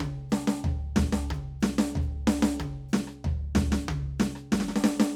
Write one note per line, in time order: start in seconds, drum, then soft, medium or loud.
0.01 kick soft
0.01 hi-hat pedal soft
0.01 high tom loud
0.30 snare loud
0.30 hi-hat pedal soft
0.48 snare loud
0.64 kick soft
0.64 floor tom loud
0.96 kick soft
0.96 snare loud
0.96 floor tom loud
1.13 snare loud
1.31 kick medium
1.31 hi-hat pedal soft
1.31 high tom loud
1.61 snare loud
1.61 hi-hat pedal soft
1.79 snare loud
1.96 kick medium
1.96 floor tom loud
2.02 hi-hat pedal soft
2.28 snare loud
2.28 hi-hat pedal soft
2.43 snare loud
2.60 kick medium
2.60 hi-hat pedal soft
2.60 high tom loud
2.89 hi-hat pedal soft
2.94 snare loud
3.08 cross-stick medium
3.25 kick soft
3.25 floor tom loud
3.56 kick soft
3.56 snare loud
3.56 floor tom loud
3.72 snare loud
3.89 kick medium
3.89 hi-hat pedal soft
3.89 high tom loud
4.19 snare loud
4.19 hi-hat pedal soft
4.36 cross-stick medium
4.53 kick soft
4.53 snare loud
4.59 snare medium
4.59 hi-hat pedal soft
4.69 snare medium
4.76 snare loud
4.84 snare loud
4.91 hi-hat pedal soft
5.00 snare loud